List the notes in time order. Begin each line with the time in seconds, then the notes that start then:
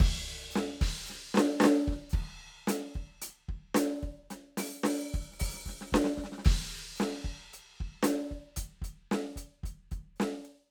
0.01 kick, ride
0.52 hi-hat pedal
0.56 snare
0.82 kick, crash
1.07 snare, hi-hat pedal
1.35 snare
1.38 snare
1.61 snare, hi-hat pedal
1.65 snare
1.89 kick, snare
2.10 kick, hi-hat pedal, crash
2.34 closed hi-hat
2.68 closed hi-hat, snare
2.95 kick, closed hi-hat
3.23 closed hi-hat
3.49 kick
3.75 closed hi-hat, snare
4.04 kick, closed hi-hat
4.31 closed hi-hat, snare
4.58 open hi-hat, snare
4.84 open hi-hat, snare
5.14 open hi-hat, kick
5.33 snare
5.40 open hi-hat, kick
5.53 snare
5.67 kick, snare
5.82 snare
5.93 kick, snare
6.05 snare
6.18 kick, snare
6.25 snare
6.33 snare
6.39 snare
6.46 kick, crash
6.97 hi-hat pedal
7.01 snare, crash
7.25 kick
7.54 closed hi-hat
7.76 closed hi-hat
7.81 kick
8.04 closed hi-hat, snare
8.09 snare
8.32 kick
8.57 closed hi-hat, kick
8.83 closed hi-hat, kick
9.12 snare
9.37 closed hi-hat, kick
9.64 closed hi-hat, kick
9.92 closed hi-hat, kick
10.17 hi-hat pedal
10.21 snare
10.46 closed hi-hat